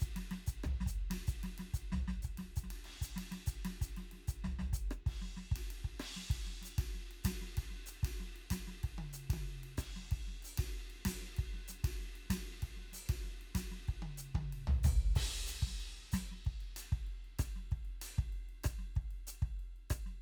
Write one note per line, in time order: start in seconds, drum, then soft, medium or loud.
0.01 kick soft
0.01 hi-hat pedal medium
0.17 snare soft
0.17 ride medium
0.32 snare soft
0.32 ride medium
0.47 kick soft
0.47 hi-hat pedal medium
0.64 cross-stick medium
0.64 floor tom medium
0.81 snare soft
0.87 kick soft
0.87 hi-hat pedal medium
1.11 snare soft
1.11 ride loud
1.28 kick soft
1.28 hi-hat pedal medium
1.44 snare soft
1.44 ride medium
1.59 snare soft
1.59 ride medium
1.74 kick soft
1.74 hi-hat pedal medium
1.93 snare soft
1.93 floor tom medium
2.09 snare soft
2.23 kick soft
2.23 hi-hat pedal medium
2.38 snare soft
2.38 ride medium
2.57 kick soft
2.57 hi-hat pedal medium
2.64 snare soft
2.71 ride medium
2.85 ride medium
3.02 kick soft
3.02 hi-hat pedal medium
3.17 snare soft
3.17 ride medium
3.32 snare soft
3.32 ride medium
3.47 kick soft
3.47 hi-hat pedal medium
3.66 snare soft
3.66 ride medium
3.82 kick soft
3.82 hi-hat pedal medium
3.98 snare soft
3.98 ride medium
4.12 snare soft
4.12 ride medium
4.28 kick soft
4.28 hi-hat pedal medium
4.45 snare soft
4.45 floor tom medium
4.60 snare soft
4.60 floor tom medium
4.74 kick soft
4.74 hi-hat pedal medium
4.92 cross-stick medium
5.07 kick soft
5.07 ride medium
5.22 snare soft
5.37 snare soft
5.52 kick soft
5.57 ride medium
5.71 ride medium
5.85 kick soft
6.01 cross-stick medium
6.01 ride loud
6.17 snare soft
6.31 kick soft
6.31 ride medium
6.47 snare soft
6.62 snare soft
6.62 hi-hat pedal medium
6.62 ride medium
6.79 kick soft
6.79 ride loud
6.95 snare soft
7.12 ride medium
7.25 kick soft
7.25 snare medium
7.25 hi-hat pedal medium
7.25 ride loud
7.42 snare soft
7.58 kick soft
7.58 ride medium
7.71 snare soft
7.87 hi-hat pedal medium
7.87 ride medium
8.04 kick soft
8.04 ride loud
8.21 snare soft
8.37 ride medium
8.51 kick soft
8.51 snare medium
8.51 hi-hat pedal medium
8.51 ride loud
8.68 snare soft
8.84 kick soft
8.84 ride medium
8.99 high tom medium
9.14 hi-hat pedal medium
9.14 ride medium
9.31 kick soft
9.31 high tom medium
9.31 ride loud
9.36 closed hi-hat soft
9.64 ride medium
9.78 kick soft
9.78 cross-stick medium
9.78 hi-hat pedal medium
9.78 ride medium
9.97 snare soft
10.12 kick soft
10.12 ride medium
10.28 snare soft
10.43 hi-hat pedal medium
10.43 ride soft
10.59 kick soft
10.59 ride loud
10.91 ride soft
11.06 kick soft
11.06 snare medium
11.06 hi-hat pedal medium
11.06 ride loud
11.23 snare soft
11.37 kick soft
11.37 ride medium
11.54 snare soft
11.69 snare soft
11.69 hi-hat pedal medium
11.69 ride medium
11.85 kick soft
11.85 ride loud
12.01 snare soft
12.16 ride medium
12.31 kick soft
12.31 snare medium
12.31 hi-hat pedal medium
12.31 ride loud
12.51 snare soft
12.63 kick soft
12.63 ride medium
12.77 snare soft
12.93 snare soft
12.93 hi-hat pedal medium
12.93 ride medium
13.10 kick soft
13.10 ride loud
13.24 snare soft
13.42 ride soft
13.56 kick soft
13.56 snare medium
13.56 hi-hat pedal medium
13.56 ride loud
13.72 snare soft
13.89 kick soft
13.89 ride soft
14.03 high tom medium
14.18 hi-hat pedal medium
14.18 ride soft
14.35 kick soft
14.35 closed hi-hat soft
14.35 high tom loud
14.54 ride medium
14.68 floor tom loud
14.84 kick soft
14.84 floor tom loud
14.84 hi-hat pedal medium
15.16 kick medium
15.16 crash loud
15.16 ride loud
15.48 hi-hat pedal medium
15.48 ride bell medium
15.63 kick soft
15.68 snare soft
15.81 ride soft
15.98 ride soft
16.13 kick soft
16.13 snare medium
16.13 hi-hat pedal medium
16.13 ride bell medium
16.32 snare soft
16.46 kick soft
16.46 ride soft
16.62 ride soft
16.77 hi-hat pedal medium
16.77 ride bell medium
16.93 kick soft
16.93 snare soft
17.08 ride soft
17.25 ride soft
17.40 kick medium
17.40 cross-stick medium
17.40 hi-hat pedal medium
17.40 ride bell medium
17.57 snare soft
17.72 kick soft
17.72 ride soft
17.86 ride soft
18.02 hi-hat pedal medium
18.02 ride bell medium
18.18 kick medium
18.18 snare soft
18.34 ride soft
18.50 ride soft
18.65 kick soft
18.65 cross-stick medium
18.65 hi-hat pedal medium
18.65 ride bell medium
18.79 snare soft
18.97 kick soft
18.97 ride soft
19.12 ride soft
19.28 hi-hat pedal loud
19.28 ride bell medium
19.43 kick soft
19.43 snare soft
19.60 ride soft
19.77 ride soft
19.91 kick soft
19.91 cross-stick medium
19.91 hi-hat pedal medium
19.91 ride bell medium
20.07 snare soft